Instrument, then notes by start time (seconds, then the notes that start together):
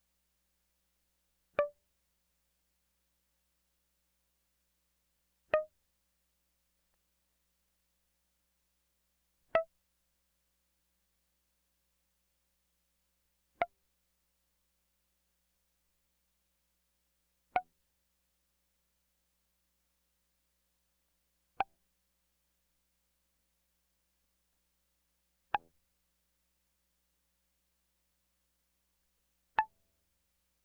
electric guitar
1.59 D5
5.54 D#5
9.55 E5
13.62 F5
17.56 F#5
21.60 G5
25.55 G#5
29.59 A5